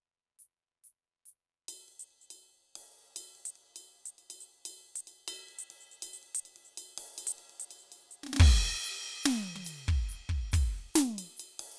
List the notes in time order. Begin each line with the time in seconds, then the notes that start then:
0.39 hi-hat pedal
0.84 hi-hat pedal
1.25 hi-hat pedal
1.68 ride bell
1.76 closed hi-hat
1.88 ride
1.99 closed hi-hat
2.10 ride
2.21 closed hi-hat
2.30 ride bell
2.75 ride
3.16 ride bell
3.35 ride
3.45 closed hi-hat
3.56 ride
3.76 ride bell
3.84 closed hi-hat
4.05 closed hi-hat
4.18 ride bell
4.30 ride bell
4.40 closed hi-hat
4.58 closed hi-hat
4.65 ride bell
4.75 closed hi-hat
4.96 closed hi-hat
5.07 ride bell
5.15 closed hi-hat
5.28 ride bell
5.38 closed hi-hat
5.49 ride
5.58 closed hi-hat
5.70 ride
5.80 closed hi-hat
5.91 closed hi-hat
6.02 ride bell
6.13 closed hi-hat
6.23 ride
6.35 closed hi-hat
6.45 ride bell
6.56 ride
6.65 closed hi-hat
6.77 ride bell
6.98 ride
7.06 closed hi-hat
7.18 ride bell
7.27 closed hi-hat
7.38 ride
7.49 ride
7.60 closed hi-hat
7.71 ride bell
7.79 closed hi-hat
7.92 ride bell
8.01 closed hi-hat
8.11 closed hi-hat
8.23 snare
8.26 snare
8.33 snare
8.36 kick, snare, crash
8.83 hi-hat pedal
9.03 ride
9.23 snare, hi-hat pedal
9.56 high tom
9.64 hi-hat pedal, ride bell
9.88 kick
10.09 percussion, hi-hat pedal, ride
10.29 kick
10.52 kick, hi-hat pedal, ride bell
10.75 ride
10.94 snare, hi-hat pedal
11.18 ride bell
11.37 hi-hat pedal, ride bell
11.59 ride
11.71 open hi-hat